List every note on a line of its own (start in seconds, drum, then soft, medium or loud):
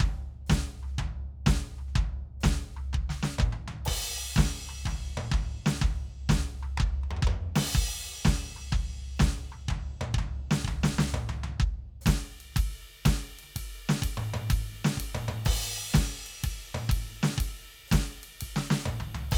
0.01 kick loud
0.01 floor tom loud
0.47 kick loud
0.47 snare loud
0.47 floor tom loud
0.47 hi-hat pedal soft
0.84 floor tom medium
0.89 snare soft
0.94 snare soft
0.99 kick loud
0.99 floor tom loud
1.47 kick loud
1.47 snare loud
1.47 floor tom loud
1.72 snare soft
1.79 floor tom medium
1.88 snare soft
1.94 kick loud
1.94 snare soft
1.94 floor tom loud
2.41 kick loud
2.41 snare loud
2.41 floor tom loud
2.41 hi-hat pedal soft
2.77 floor tom medium
2.94 kick loud
2.94 floor tom medium
3.10 snare medium
3.23 snare loud
3.39 kick loud
3.39 high tom loud
3.53 floor tom medium
3.69 floor tom loud
3.86 kick loud
3.86 crash loud
4.35 kick loud
4.35 snare loud
4.35 floor tom loud
4.35 hi-hat pedal soft
4.70 floor tom medium
4.86 kick loud
4.86 floor tom loud
5.18 high tom loud
5.32 kick loud
5.32 floor tom loud
5.67 snare loud
5.82 kick loud
5.82 floor tom loud
6.30 kick loud
6.30 snare loud
6.30 floor tom loud
6.63 floor tom medium
6.78 kick loud
6.78 floor tom loud
7.04 mid tom medium
7.11 mid tom loud
7.17 mid tom medium
7.23 kick loud
7.28 mid tom loud
7.56 snare loud
7.56 crash loud
7.76 kick loud
8.26 kick loud
8.26 snare loud
8.26 floor tom loud
8.57 floor tom medium
8.73 kick loud
8.73 floor tom loud
9.17 kick loud
9.17 snare loud
9.17 floor tom loud
9.17 hi-hat pedal soft
9.53 floor tom medium
9.69 kick loud
9.69 floor tom loud
10.02 high tom loud
10.15 kick loud
10.19 floor tom loud
10.52 snare loud
10.61 hi-hat pedal soft
10.65 kick loud
10.65 floor tom loud
10.84 snare loud
10.99 snare loud
11.09 hi-hat pedal soft
11.14 kick medium
11.14 high tom loud
11.30 floor tom loud
11.44 floor tom loud
11.61 kick loud
12.02 hi-hat pedal medium
12.07 kick loud
12.07 snare loud
12.07 ride loud
12.41 ride medium
12.53 snare soft
12.57 kick loud
12.57 snare soft
12.57 ride loud
13.06 kick loud
13.06 snare loud
13.06 ride loud
13.40 ride medium
13.44 snare soft
13.47 snare soft
13.57 kick medium
13.57 ride loud
13.90 snare loud
14.03 kick loud
14.03 ride loud
14.18 high tom loud
14.34 high tom loud
14.51 kick loud
14.51 ride loud
14.85 snare loud
14.92 hi-hat pedal soft
14.98 kick medium
14.98 ride loud
15.15 high tom loud
15.29 high tom loud
15.46 kick loud
15.46 crash loud
15.91 snare loud
15.91 hi-hat pedal medium
15.96 kick loud
15.96 ride loud
16.27 ride medium
16.44 kick loud
16.44 ride loud
16.75 high tom loud
16.84 hi-hat pedal soft
16.90 kick loud
16.90 ride loud
17.24 snare loud
17.39 kick loud
17.39 ride loud
17.89 kick loud
17.89 hi-hat pedal soft
17.93 snare loud
17.93 ride loud
18.24 ride medium
18.42 kick medium
18.42 ride loud
18.57 snare loud
18.71 snare loud
18.80 hi-hat pedal soft
18.86 kick medium
18.86 high tom loud
19.01 floor tom loud
19.15 floor tom loud
19.32 kick loud
19.32 crash loud